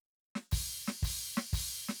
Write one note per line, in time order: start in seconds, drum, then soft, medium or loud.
0.36 snare medium
0.52 kick medium
0.52 crash loud
0.88 snare medium
1.03 kick medium
1.03 crash loud
1.38 snare medium
1.53 kick medium
1.53 crash loud
1.89 snare medium